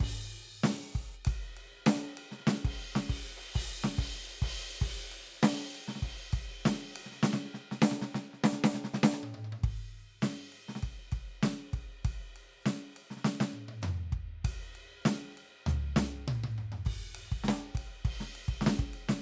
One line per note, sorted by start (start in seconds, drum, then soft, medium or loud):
0.01 kick medium
0.01 crash medium
0.64 open hi-hat loud
0.64 snare loud
0.96 kick medium
1.26 kick medium
1.26 ride loud
1.57 ride medium
1.87 snare loud
1.87 ride loud
2.18 ride loud
2.32 snare soft
2.40 snare soft
2.48 snare loud
2.65 kick medium
2.65 ride medium
2.96 snare loud
3.09 kick medium
3.09 crash medium
3.37 ride medium
3.55 kick medium
3.55 crash loud
3.84 snare loud
3.98 kick medium
3.98 ride loud
4.26 crash soft
4.42 kick medium
4.42 ride loud
4.82 kick medium
4.82 crash medium
4.88 closed hi-hat soft
5.12 ride medium
5.43 snare loud
5.43 ride loud
5.70 hi-hat pedal soft
5.75 ride medium
5.88 snare medium
5.96 snare soft
6.03 kick medium
6.03 ride medium
6.33 kick medium
6.33 ride medium
6.62 snare loud
6.62 hi-hat pedal soft
6.62 ride medium
6.92 hi-hat pedal soft
6.96 ride loud
7.06 snare soft
7.12 snare soft
7.17 snare soft
7.23 snare loud
7.23 hi-hat pedal loud
7.34 snare medium
7.45 snare soft
7.54 snare soft
7.72 snare medium
7.82 snare loud
7.82 hi-hat pedal medium
7.92 snare medium
8.02 snare medium
8.15 snare medium
8.34 snare soft
8.44 snare loud
8.53 snare soft
8.64 snare loud
8.75 snare medium
8.85 snare medium
8.94 snare medium
9.04 snare loud
9.14 cross-stick medium
9.24 high tom medium
9.35 high tom medium
9.45 high tom soft
9.53 high tom medium
9.64 kick medium
9.64 crash soft
10.22 snare loud
10.22 ride medium
10.53 ride medium
10.69 snare soft
10.76 snare medium
10.83 kick medium
10.83 ride medium
11.12 kick medium
11.12 ride medium
11.43 snare loud
11.43 ride medium
11.74 kick medium
11.74 ride medium
12.05 kick medium
12.05 ride loud
12.37 ride medium
12.62 hi-hat pedal soft
12.66 snare loud
12.66 ride medium
12.93 hi-hat pedal soft
12.97 ride medium
13.11 snare soft
13.17 snare soft
13.25 snare loud
13.25 hi-hat pedal loud
13.41 snare loud
13.54 high tom medium
13.69 high tom medium
13.83 hi-hat pedal medium
13.83 mid tom loud
14.13 kick medium
14.45 kick medium
14.45 ride loud
14.73 hi-hat pedal soft
14.73 ride medium
15.02 hi-hat pedal soft
15.06 snare loud
15.06 ride medium
15.32 hi-hat pedal soft
15.38 ride medium
15.52 snare soft
15.55 snare soft
15.60 snare soft
15.67 floor tom loud
15.67 hi-hat pedal loud
15.97 snare loud
16.28 high tom loud
16.44 high tom medium
16.59 mid tom medium
16.73 mid tom medium
16.86 kick medium
16.86 crash medium
17.15 ride loud
17.32 kick medium
17.44 snare medium
17.49 snare loud
17.75 kick medium
17.75 ride medium
18.05 kick medium
18.05 ride medium
18.21 snare medium
18.36 ride medium
18.49 kick medium
18.62 snare medium
18.67 snare loud
18.80 kick medium
18.94 ride medium
19.09 snare loud